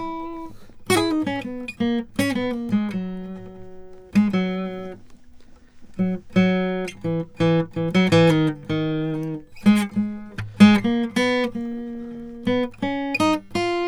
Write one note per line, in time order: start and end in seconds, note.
0.00 0.53 E4
0.90 1.01 F4
1.01 1.11 E4
1.11 1.26 D#4
1.27 1.40 C#4
1.40 1.69 B3
1.81 2.05 A#3
2.19 2.30 C#4
2.30 2.51 B3
2.52 2.74 A#3
2.73 2.90 G#3
2.90 4.13 F#3
4.16 4.31 G#3
4.34 4.99 F#3
5.99 6.22 F#3
6.36 6.91 F#3
7.05 7.27 E3
7.41 7.68 E3
7.77 7.93 E3
7.95 8.10 F#3
8.12 8.30 E3
8.31 8.53 D#3
8.70 9.44 D#3
9.66 9.88 G#3
9.97 10.38 G#3
10.61 10.81 G#3
10.85 11.08 A#3
11.17 11.50 B3
11.56 12.47 A#3
12.47 12.72 B3
12.83 13.18 C#4
13.21 13.42 D#4
13.56 13.88 F4